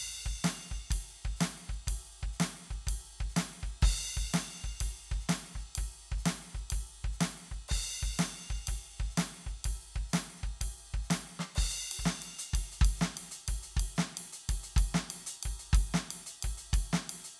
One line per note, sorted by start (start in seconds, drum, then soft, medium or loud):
0.26 kick medium
0.38 hi-hat pedal medium
0.45 snare loud
0.45 ride loud
0.72 kick medium
0.91 kick medium
0.91 ride loud
1.26 kick medium
1.37 hi-hat pedal soft
1.41 snare loud
1.41 ride loud
1.70 kick medium
1.88 kick medium
1.88 ride loud
2.23 kick medium
2.33 hi-hat pedal soft
2.41 snare loud
2.41 ride loud
2.71 kick medium
2.88 kick medium
2.88 ride loud
3.21 kick medium
3.30 hi-hat pedal soft
3.37 snare loud
3.37 ride loud
3.64 kick medium
3.83 kick loud
3.83 crash loud
4.17 kick medium
4.25 hi-hat pedal soft
4.34 snare loud
4.34 ride loud
4.65 kick medium
4.81 kick medium
4.81 ride loud
5.12 kick medium
5.21 hi-hat pedal soft
5.30 snare loud
5.30 ride loud
5.56 kick medium
5.76 kick medium
5.76 ride loud
6.12 kick medium
6.19 hi-hat pedal soft
6.26 snare loud
6.26 ride loud
6.55 kick medium
6.71 kick medium
6.71 ride loud
7.05 kick medium
7.13 hi-hat pedal soft
7.21 snare loud
7.21 ride loud
7.52 kick medium
7.69 kick medium
7.69 crash loud
8.03 kick medium
8.13 hi-hat pedal soft
8.20 snare loud
8.20 ride loud
8.51 kick medium
8.68 kick medium
8.68 ride loud
9.00 kick medium
9.11 hi-hat pedal soft
9.18 snare loud
9.18 ride loud
9.47 kick medium
9.65 kick medium
9.65 ride loud
9.96 kick medium
10.10 hi-hat pedal soft
10.14 snare loud
10.14 ride loud
10.44 kick medium
10.62 kick medium
10.62 ride loud
10.94 kick medium
11.04 hi-hat pedal soft
11.11 snare loud
11.11 ride loud
11.40 snare medium
11.56 kick medium
11.56 crash loud
11.72 closed hi-hat medium
11.92 ride loud
12.00 kick soft
12.06 snare loud
12.23 ride medium
12.39 closed hi-hat loud
12.54 kick medium
12.54 ride loud
12.73 closed hi-hat medium
12.82 kick loud
12.82 ride loud
12.98 hi-hat pedal medium
13.02 snare loud
13.18 ride loud
13.32 closed hi-hat medium
13.49 kick medium
13.49 ride loud
13.63 open hi-hat medium
13.77 kick medium
13.77 ride loud
13.97 snare loud
13.97 hi-hat pedal medium
14.18 ride loud
14.33 closed hi-hat medium
14.50 kick medium
14.50 ride loud
14.64 closed hi-hat medium
14.77 kick loud
14.77 ride loud
14.95 snare loud
14.95 hi-hat pedal medium
15.11 ride loud
15.27 closed hi-hat loud
15.43 kick medium
15.43 ride loud
15.60 closed hi-hat medium
15.74 kick loud
15.74 ride loud
15.95 snare loud
15.95 hi-hat pedal medium
16.11 ride loud
16.27 closed hi-hat medium
16.43 kick medium
16.43 ride loud
16.58 closed hi-hat medium
16.74 kick loud
16.74 ride loud
16.94 snare loud
16.94 hi-hat pedal medium
17.10 ride loud
17.25 closed hi-hat medium